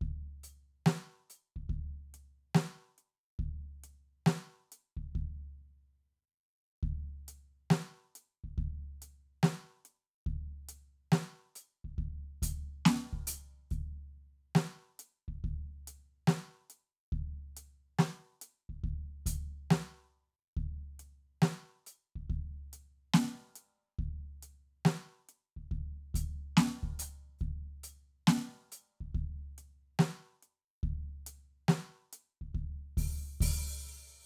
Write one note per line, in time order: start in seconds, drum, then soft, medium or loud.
0.02 kick medium
0.44 closed hi-hat soft
0.87 snare loud
1.31 closed hi-hat soft
1.57 kick soft
1.70 kick medium
2.15 closed hi-hat soft
2.55 snare loud
2.99 closed hi-hat soft
3.40 kick medium
3.84 closed hi-hat soft
4.27 snare loud
4.73 closed hi-hat medium
4.97 kick soft
5.16 kick medium
5.16 crash soft
6.83 kick medium
6.83 snare soft
6.83 crash soft
6.83 ride soft
7.29 closed hi-hat medium
7.71 snare loud
8.16 closed hi-hat medium
8.44 kick soft
8.58 kick medium
9.03 closed hi-hat medium
9.44 snare loud
9.86 closed hi-hat soft
10.27 kick medium
10.69 closed hi-hat medium
11.13 snare loud
11.56 closed hi-hat medium
11.85 kick soft
11.99 kick medium
12.43 closed hi-hat loud
12.43 kick medium
12.86 snare loud
13.13 kick medium
13.28 closed hi-hat loud
13.71 kick medium
13.71 hi-hat pedal soft
14.56 snare loud
15.00 closed hi-hat medium
15.29 kick soft
15.45 kick medium
15.45 crash soft
15.45 ride soft
15.88 closed hi-hat medium
16.28 snare loud
16.71 closed hi-hat medium
17.13 kick medium
17.57 closed hi-hat medium
17.99 snare loud
18.42 closed hi-hat medium
18.70 kick soft
18.84 kick medium
19.27 closed hi-hat loud
19.27 kick medium
19.71 snare loud
20.57 kick medium
21.00 closed hi-hat soft
21.43 snare loud
21.87 closed hi-hat medium
22.16 kick soft
22.30 kick medium
22.30 crash soft
22.30 ride soft
22.74 closed hi-hat medium
23.14 snare loud
23.56 closed hi-hat medium
23.99 kick medium
24.43 closed hi-hat medium
24.86 snare loud
25.29 closed hi-hat soft
25.57 kick soft
25.72 kick medium
26.15 closed hi-hat medium
26.15 kick medium
26.58 snare loud
26.84 kick medium
27.00 closed hi-hat loud
27.00 cross-stick soft
27.39 kick medium
27.39 hi-hat pedal soft
27.84 closed hi-hat medium
28.28 snare loud
28.73 closed hi-hat medium
29.01 kick soft
29.15 kick medium
29.15 crash soft
29.15 ride soft
29.59 closed hi-hat soft
30.00 snare loud
30.43 closed hi-hat soft
30.84 kick medium
30.84 crash soft
31.27 closed hi-hat medium
31.69 snare loud
32.13 closed hi-hat medium
32.42 kick soft
32.55 kick medium
32.55 crash soft
32.98 open hi-hat medium
32.98 kick medium
32.98 cross-stick soft
33.41 open hi-hat loud
33.41 kick loud